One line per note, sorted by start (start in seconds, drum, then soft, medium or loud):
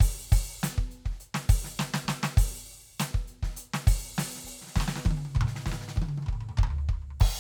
0.01 open hi-hat loud
0.01 kick loud
0.33 open hi-hat loud
0.33 kick loud
0.62 closed hi-hat loud
0.62 snare loud
0.62 hi-hat pedal soft
0.78 kick medium
0.83 snare soft
0.92 closed hi-hat soft
1.06 kick medium
1.06 snare soft
1.11 snare soft
1.15 snare soft
1.21 closed hi-hat medium
1.35 snare loud
1.50 open hi-hat loud
1.50 kick loud
1.65 snare medium
1.78 snare loud
1.78 hi-hat pedal medium
1.94 snare loud
2.05 kick soft
2.05 snare loud
2.23 snare loud
2.38 open hi-hat loud
2.38 kick loud
2.89 kick soft
3.00 open hi-hat loud
3.00 snare loud
3.00 hi-hat pedal soft
3.15 kick medium
3.28 closed hi-hat soft
3.43 kick medium
3.43 snare medium
3.49 snare soft
3.53 snare soft
3.57 closed hi-hat loud
3.74 snare loud
3.87 open hi-hat loud
3.87 kick loud
3.87 snare soft
4.19 open hi-hat loud
4.19 snare loud
4.36 snare soft
4.45 open hi-hat medium
4.45 kick soft
4.62 snare soft
4.67 snare medium
4.71 snare soft
4.76 kick medium
4.76 snare loud
4.80 snare loud
4.88 snare loud
4.96 snare loud
5.06 kick loud
5.06 high tom loud
5.11 high tom loud
5.18 high tom medium
5.26 high tom medium
5.30 high tom soft
5.36 kick medium
5.36 mid tom loud
5.42 mid tom loud
5.48 snare medium
5.56 snare medium
5.61 snare medium
5.66 kick medium
5.66 snare loud
5.72 snare medium
5.82 snare medium
5.88 snare medium
5.97 kick medium
5.97 high tom medium
6.02 high tom loud
6.06 high tom medium
6.09 high tom medium
6.18 high tom medium
6.23 mid tom medium
6.23 high tom soft
6.29 kick medium
6.33 mid tom medium
6.37 mid tom soft
6.41 mid tom medium
6.49 mid tom medium
6.58 kick loud
6.58 floor tom loud
6.64 floor tom medium
6.67 floor tom soft
6.71 floor tom medium
6.79 floor tom soft
6.89 kick medium
6.89 floor tom soft
6.94 floor tom medium
7.02 floor tom soft
7.11 floor tom soft
7.18 kick soft
7.18 crash loud
7.21 kick loud